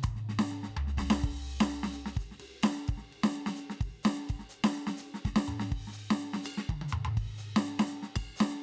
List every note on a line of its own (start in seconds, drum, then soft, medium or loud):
0.03 kick soft
0.03 hi-hat pedal loud
0.03 mid tom loud
0.10 kick soft
0.14 kick soft
0.14 snare soft
0.29 snare medium
0.39 snare loud
0.39 hi-hat pedal soft
0.51 snare soft
0.63 snare medium
0.69 kick soft
0.77 floor tom loud
0.87 snare soft
0.97 kick soft
0.97 snare loud
1.10 snare loud
1.16 hi-hat pedal soft
1.24 kick medium
1.24 crash loud
1.31 kick soft
1.31 snare soft
1.35 snare soft
1.49 ride bell soft
1.60 snare loud
1.66 hi-hat pedal medium
1.74 ride soft
1.83 snare medium
1.92 hi-hat pedal medium
1.92 ride medium
2.06 snare medium
2.17 kick soft
2.17 hi-hat pedal medium
2.17 ride loud
2.31 snare soft
2.40 ride loud
2.63 snare loud
2.63 ride loud
2.88 kick medium
2.88 ride loud
2.96 kick soft
2.96 snare soft
3.12 ride medium
3.23 snare loud
3.30 hi-hat pedal medium
3.36 ride soft
3.46 snare medium
3.56 hi-hat pedal medium
3.56 ride medium
3.70 snare medium
3.81 kick soft
3.81 ride medium
3.87 kick soft
3.90 kick soft
4.03 snare loud
4.03 hi-hat pedal medium
4.03 ride loud
4.29 kick soft
4.29 ride bell medium
4.35 kick soft
4.35 snare soft
4.49 hi-hat pedal medium
4.54 ride soft
4.64 snare loud
4.78 ride medium
4.87 snare medium
4.97 hi-hat pedal loud
4.97 ride medium
5.14 snare soft
5.25 kick soft
5.25 snare medium
5.33 kick soft
5.33 snare loud
5.45 hi-hat pedal loud
5.45 mid tom medium
5.60 snare medium
5.72 kick soft
5.72 crash medium
5.77 kick soft
5.80 kick soft
5.87 snare soft
5.92 hi-hat pedal medium
5.99 ride bell soft
6.10 snare loud
6.10 hi-hat pedal soft
6.21 ride soft
6.33 snare medium
6.43 hi-hat pedal medium
6.43 ride bell loud
6.57 snare medium
6.69 kick soft
6.69 high tom medium
6.75 kick soft
6.81 high tom medium
6.88 hi-hat pedal medium
6.92 mid tom loud
7.05 mid tom medium
7.17 kick medium
7.17 crash loud
7.23 kick soft
7.27 kick soft
7.38 hi-hat pedal medium
7.44 ride medium
7.56 snare loud
7.56 hi-hat pedal soft
7.69 ride soft
7.79 snare loud
7.87 hi-hat pedal medium
7.93 ride medium
8.03 snare medium
8.15 kick soft
8.15 snare soft
8.15 ride bell loud
8.22 kick soft
8.36 hi-hat pedal loud
8.36 ride medium
8.40 snare loud
8.49 snare soft